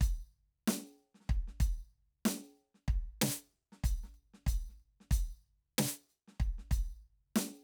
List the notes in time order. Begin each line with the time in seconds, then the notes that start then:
0.01 closed hi-hat, kick
0.34 closed hi-hat
0.68 closed hi-hat, snare
0.99 closed hi-hat
1.15 snare
1.20 snare
1.25 snare
1.28 kick, snare, closed hi-hat
1.31 snare
1.48 snare
1.60 closed hi-hat, kick
2.26 closed hi-hat, snare
2.57 closed hi-hat
2.75 snare
2.88 kick, closed hi-hat
3.22 closed hi-hat, snare
3.53 snare
3.72 snare
3.76 snare
3.83 closed hi-hat, kick, snare
4.04 snare
4.14 closed hi-hat
4.34 snare
4.47 closed hi-hat, kick
4.69 snare
4.80 closed hi-hat
5.01 snare
5.11 closed hi-hat, kick
5.46 closed hi-hat
5.78 closed hi-hat, snare
6.10 closed hi-hat
6.28 snare
6.32 snare
6.40 kick, closed hi-hat
6.59 snare
6.71 closed hi-hat, kick
7.36 closed hi-hat, snare